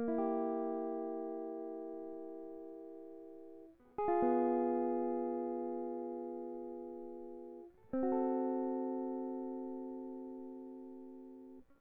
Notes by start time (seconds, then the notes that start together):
0.00 A#3
0.08 E4
0.19 G4
4.03 G#4
4.09 F4
4.23 B3
7.93 C4
8.04 F#4
8.13 A4